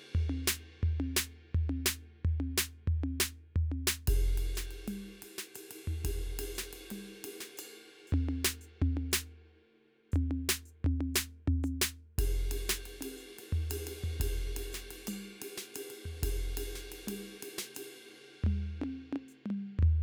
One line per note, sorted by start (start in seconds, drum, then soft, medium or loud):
0.15 floor tom loud
0.30 high tom loud
0.44 snare loud
0.44 hi-hat pedal soft
0.83 floor tom loud
1.00 high tom loud
1.17 snare loud
1.55 floor tom loud
1.70 high tom loud
1.86 snare loud
2.25 floor tom loud
2.40 high tom loud
2.58 snare loud
2.88 floor tom loud
3.04 high tom loud
3.20 snare loud
3.56 floor tom loud
3.72 high tom loud
3.87 snare loud
4.08 kick medium
4.08 ride loud
4.38 ride medium
4.56 snare medium
4.56 hi-hat pedal medium
4.71 ride soft
4.88 mid tom loud
4.88 ride medium
5.22 ride medium
5.38 snare medium
5.55 hi-hat pedal medium
5.55 ride medium
5.71 ride medium
5.88 floor tom medium
6.05 kick medium
6.05 ride loud
6.39 ride loud
6.55 snare medium
6.55 hi-hat pedal medium
6.73 ride medium
6.91 mid tom medium
6.91 ride medium
7.06 hi-hat pedal soft
7.24 ride loud
7.41 snare medium
7.58 hi-hat pedal medium
7.58 ride bell medium
8.07 hi-hat pedal soft
8.13 floor tom loud
8.13 high tom loud
8.29 high tom loud
8.45 snare loud
8.61 hi-hat pedal medium
8.82 floor tom loud
8.82 high tom loud
8.97 high tom loud
9.12 snare loud
9.12 hi-hat pedal soft
10.12 floor tom loud
10.12 hi-hat pedal soft
10.16 high tom loud
10.31 high tom loud
10.49 snare loud
10.66 hi-hat pedal soft
10.85 floor tom loud
10.85 high tom loud
11.01 high tom loud
11.15 snare loud
11.15 hi-hat pedal soft
11.48 floor tom loud
11.48 high tom loud
11.64 hi-hat pedal medium
11.64 high tom loud
11.82 snare loud
12.18 kick medium
12.18 ride loud
12.51 ride loud
12.68 snare loud
12.68 hi-hat pedal medium
12.86 ride medium
13.01 high tom medium
13.01 ride loud
13.18 hi-hat pedal soft
13.39 ride medium
13.53 floor tom loud
13.70 hi-hat pedal medium
13.70 ride loud
13.87 ride medium
14.04 floor tom medium
14.20 kick medium
14.20 ride loud
14.57 ride loud
14.73 snare medium
14.73 hi-hat pedal medium
14.91 ride medium
15.07 mid tom loud
15.07 ride bell medium
15.22 hi-hat pedal soft
15.42 ride loud
15.58 snare medium
15.75 hi-hat pedal medium
15.75 ride loud
15.90 ride medium
16.06 floor tom medium
16.23 kick medium
16.23 ride loud
16.57 ride loud
16.76 snare medium
16.76 hi-hat pedal medium
16.92 ride medium
17.08 mid tom medium
17.08 ride loud
17.43 ride loud
17.58 snare medium
17.75 hi-hat pedal medium
17.75 ride loud
18.44 floor tom loud
18.44 mid tom loud
18.82 high tom loud
18.84 high tom loud
19.13 high tom loud
19.16 high tom loud
19.28 hi-hat pedal soft
19.46 mid tom loud
19.50 mid tom loud
19.79 floor tom loud
19.83 floor tom loud